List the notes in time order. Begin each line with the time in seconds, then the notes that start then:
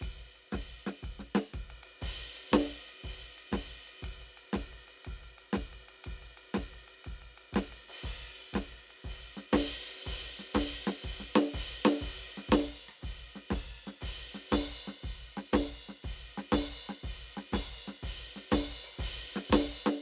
0.01 kick, ride
0.35 ride
0.51 kick, snare, hi-hat pedal, ride
0.86 snare
1.03 kick, ride
1.19 snare
1.35 snare
1.52 kick, hi-hat pedal, ride
1.70 ride
1.83 ride
2.01 kick, ride
2.37 ride
2.49 kick, snare, hi-hat pedal
2.53 ride
2.89 ride
3.04 kick, ride
3.38 ride
3.49 kick, snare, hi-hat pedal, ride
3.87 ride
4.02 kick, ride
4.22 ride
4.37 ride
4.52 kick, snare, hi-hat pedal, ride
4.73 ride
4.88 ride
5.05 kick, ride
5.23 ride
5.38 ride
5.52 kick, snare, hi-hat pedal, ride
5.73 ride
5.88 ride
6.04 kick, ride
6.22 ride
6.37 ride
6.54 kick, snare, hi-hat pedal, ride
6.74 ride
6.88 ride
7.04 kick, ride
7.22 ride
7.38 ride
7.53 kick, snare, hi-hat pedal, ride
7.72 ride
7.89 ride
8.03 kick, crash
8.53 kick, snare, hi-hat pedal, ride
8.90 ride
9.04 kick, ride
9.37 snare
9.50 kick, snare, hi-hat pedal, ride
9.90 ride
10.06 kick, ride
10.39 snare
10.53 kick, snare, hi-hat pedal, ride
10.87 snare
11.03 kick, ride
11.20 snare
11.35 snare
11.53 kick, hi-hat pedal, ride
11.85 snare, ride
12.01 kick, ride
12.37 snare
12.49 kick, snare, hi-hat pedal, crash
12.88 cross-stick
13.01 kick, ride
13.35 snare
13.50 kick, snare, hi-hat pedal, crash
13.87 snare
14.01 kick, ride
14.34 snare
14.51 kick, snare, hi-hat pedal, crash
14.87 snare
15.02 kick, ride
15.37 snare
15.52 kick, snare, hi-hat pedal, crash
15.88 snare
16.03 kick, ride
16.37 snare
16.52 kick, snare, hi-hat pedal, crash
16.89 snare
17.03 kick, ride
17.37 snare
17.52 kick, snare, hi-hat pedal, crash
17.87 snare
18.02 kick, ride
18.36 snare
18.50 kick, snare, hi-hat pedal, crash
18.83 open hi-hat
18.97 kick, hi-hat pedal, ride
19.19 kick
19.36 snare
19.50 kick, snare, crash
19.86 snare